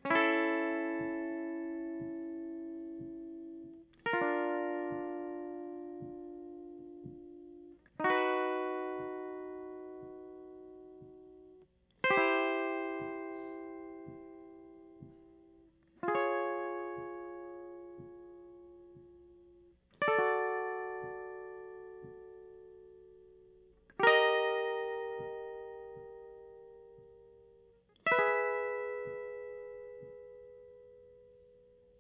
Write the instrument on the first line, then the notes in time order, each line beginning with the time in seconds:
electric guitar
0.06 C#4
0.11 E4
0.16 A4
4.07 A#4
4.14 F4
4.22 D4
8.01 D#4
8.05 F#4
8.11 B4
12.05 C5
12.11 G4
12.18 E4
16.04 F4
16.09 G#4
16.16 C#5
20.03 D5
20.09 A4
20.19 F#4
24.00 G4 A#4
24.08 D#5
28.07 E5
28.12 B4
28.19 G#4